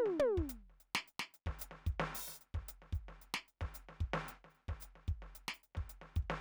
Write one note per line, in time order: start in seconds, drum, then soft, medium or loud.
0.06 snare soft
0.19 high tom loud
0.37 kick soft
0.37 snare soft
0.49 closed hi-hat medium
0.70 snare soft
0.80 closed hi-hat soft
0.95 snare loud
1.07 closed hi-hat soft
1.19 snare medium
1.34 closed hi-hat soft
1.46 kick soft
1.46 snare soft
1.58 closed hi-hat loud
1.58 hi-hat pedal medium
1.71 snare soft
1.86 kick soft
1.86 closed hi-hat soft
1.92 kick soft
1.99 snare medium
2.15 open hi-hat medium
2.28 snare soft
2.35 hi-hat pedal medium
2.41 closed hi-hat soft
2.54 kick soft
2.54 snare soft
2.59 kick soft
2.68 closed hi-hat medium
2.82 snare soft
2.92 closed hi-hat soft
2.92 kick soft
3.08 snare soft
3.21 closed hi-hat soft
3.34 snare medium
3.48 closed hi-hat soft
3.61 kick soft
3.61 snare soft
3.74 closed hi-hat medium
3.74 hi-hat pedal medium
3.89 snare soft
4.00 kick soft
4.13 snare medium
4.28 closed hi-hat medium
4.44 snare soft
4.50 hi-hat pedal soft
4.54 closed hi-hat soft
4.68 kick soft
4.68 snare soft
4.80 closed hi-hat medium
4.80 hi-hat pedal medium
4.95 snare soft
5.07 closed hi-hat soft
5.07 kick soft
5.22 snare soft
5.35 open hi-hat medium
5.48 snare medium
5.53 hi-hat pedal medium
5.63 closed hi-hat soft
5.75 kick soft
5.75 snare soft
5.82 kick soft
5.89 closed hi-hat medium
6.01 snare soft
6.16 kick soft
6.16 closed hi-hat soft
6.22 kick soft
6.30 snare medium